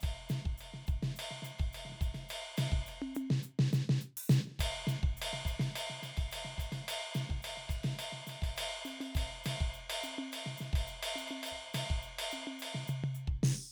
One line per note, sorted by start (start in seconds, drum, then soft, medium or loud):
0.01 kick soft
0.01 hi-hat pedal medium
0.01 ride bell medium
0.29 snare medium
0.29 hi-hat pedal medium
0.29 ride soft
0.45 kick soft
0.45 snare soft
0.58 hi-hat pedal medium
0.58 ride bell medium
0.74 snare soft
0.87 kick soft
0.87 hi-hat pedal medium
0.87 ride soft
1.03 snare medium
1.03 ride soft
1.16 hi-hat pedal medium
1.16 ride bell loud
1.31 snare soft
1.43 snare soft
1.43 hi-hat pedal loud
1.43 ride soft
1.59 kick soft
1.59 ride soft
1.73 hi-hat pedal medium
1.73 ride bell medium
1.86 snare soft
1.90 snare soft
1.92 snare soft
1.95 snare soft
2.01 kick soft
2.01 hi-hat pedal medium
2.01 ride soft
2.15 snare soft
2.15 ride soft
2.29 hi-hat pedal medium
2.29 ride bell loud
2.57 snare medium
2.57 hi-hat pedal medium
2.57 ride loud
2.72 kick medium
2.72 snare soft
2.87 snare soft
2.87 hi-hat pedal medium
2.87 ride medium
3.02 high tom medium
3.15 hi-hat pedal loud
3.15 high tom loud
3.31 snare medium
3.43 hi-hat pedal loud
3.60 snare loud
3.73 snare medium
3.73 hi-hat pedal medium
3.90 snare medium
4.01 hi-hat pedal medium
4.17 open hi-hat medium
4.30 snare loud
4.30 hi-hat pedal medium
4.41 snare soft
4.48 snare soft
4.52 snare soft
4.60 kick soft
4.60 hi-hat pedal loud
4.60 ride loud
4.87 snare medium
4.87 hi-hat pedal loud
5.03 kick medium
5.03 snare soft
5.17 hi-hat pedal medium
5.22 ride loud
5.33 snare soft
5.46 kick soft
5.46 hi-hat pedal loud
5.46 ride medium
5.60 snare medium
5.60 ride medium
5.76 hi-hat pedal medium
5.76 ride loud
5.90 snare soft
6.03 snare soft
6.03 hi-hat pedal medium
6.03 ride medium
6.17 kick soft
6.17 ride medium
6.32 hi-hat pedal loud
6.32 ride loud
6.45 snare soft
6.58 kick soft
6.58 hi-hat pedal medium
6.58 ride medium
6.72 snare medium
6.72 ride medium
6.89 hi-hat pedal loud
6.89 ride loud
7.15 snare medium
7.15 hi-hat pedal medium
7.15 ride medium
7.30 kick soft
7.30 snare soft
7.43 hi-hat pedal medium
7.43 ride loud
7.58 snare soft
7.70 kick soft
7.70 hi-hat pedal medium
7.70 ride medium
7.84 snare medium
7.84 ride medium
7.99 hi-hat pedal medium
7.99 ride loud
8.13 snare soft
8.27 snare soft
8.27 hi-hat pedal medium
8.27 ride medium
8.42 kick soft
8.42 ride medium
8.57 hi-hat pedal medium
8.57 ride loud
8.85 hi-hat pedal medium
8.85 high tom medium
8.85 ride medium
9.01 high tom medium
9.01 ride medium
9.15 kick soft
9.15 hi-hat pedal medium
9.15 ride medium
9.44 snare medium
9.44 hi-hat pedal medium
9.44 ride loud
9.61 kick soft
9.74 hi-hat pedal medium
9.90 ride loud
10.04 hi-hat pedal loud
10.04 high tom soft
10.19 high tom medium
10.33 hi-hat pedal medium
10.33 ride loud
10.47 snare soft
10.58 snare soft
10.58 hi-hat pedal medium
10.62 ride soft
10.73 kick medium
10.73 ride medium
10.88 hi-hat pedal medium
11.03 ride loud
11.16 hi-hat pedal medium
11.16 high tom medium
11.28 high tom medium
11.28 ride medium
11.43 hi-hat pedal medium
11.43 ride loud
11.52 kick soft
11.74 snare medium
11.74 hi-hat pedal medium
11.74 ride loud
11.90 kick soft
12.03 hi-hat pedal medium
12.19 ride loud
12.32 hi-hat pedal medium
12.32 high tom medium
12.48 high tom medium
12.60 hi-hat pedal loud
12.60 ride loud
12.75 snare medium
12.88 floor tom medium
12.88 hi-hat pedal loud
13.04 floor tom loud
13.15 hi-hat pedal medium
13.28 kick soft
13.44 snare loud
13.44 hi-hat pedal soft
13.44 crash medium